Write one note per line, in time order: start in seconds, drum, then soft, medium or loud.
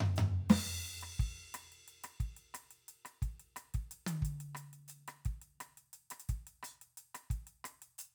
0.01 floor tom loud
0.16 floor tom loud
0.16 hi-hat pedal medium
0.50 snare loud
0.50 hi-hat pedal medium
0.50 crash loud
0.86 closed hi-hat medium
1.02 cross-stick medium
1.02 closed hi-hat soft
1.20 kick medium
1.20 closed hi-hat soft
1.38 closed hi-hat soft
1.55 cross-stick medium
1.55 closed hi-hat medium
1.72 closed hi-hat soft
1.88 closed hi-hat soft
2.04 cross-stick medium
2.04 closed hi-hat medium
2.20 kick medium
2.20 closed hi-hat soft
2.37 closed hi-hat soft
2.55 cross-stick medium
2.55 closed hi-hat medium
2.71 closed hi-hat soft
2.89 closed hi-hat medium
3.06 cross-stick medium
3.06 closed hi-hat soft
3.22 kick medium
3.22 closed hi-hat soft
3.40 closed hi-hat soft
3.57 cross-stick medium
3.57 closed hi-hat medium
3.74 kick medium
3.74 closed hi-hat soft
3.92 closed hi-hat medium
4.07 closed hi-hat medium
4.07 high tom loud
4.23 kick medium
4.23 closed hi-hat medium
4.41 closed hi-hat soft
4.55 cross-stick medium
4.55 closed hi-hat medium
4.74 closed hi-hat soft
4.88 closed hi-hat soft
4.88 hi-hat pedal medium
5.08 cross-stick medium
5.08 closed hi-hat soft
5.25 kick medium
5.25 closed hi-hat soft
5.42 closed hi-hat soft
5.61 cross-stick medium
5.61 closed hi-hat medium
5.78 closed hi-hat soft
5.94 closed hi-hat medium
6.11 cross-stick medium
6.11 closed hi-hat medium
6.20 closed hi-hat medium
6.29 kick medium
6.29 closed hi-hat medium
6.47 closed hi-hat soft
6.63 closed hi-hat medium
6.63 cross-stick medium
6.82 closed hi-hat soft
6.98 closed hi-hat medium
7.15 cross-stick medium
7.15 closed hi-hat medium
7.31 kick medium
7.31 closed hi-hat soft
7.47 closed hi-hat soft
7.65 cross-stick medium
7.65 closed hi-hat medium
7.82 closed hi-hat soft
7.99 hi-hat pedal medium
7.99 open hi-hat medium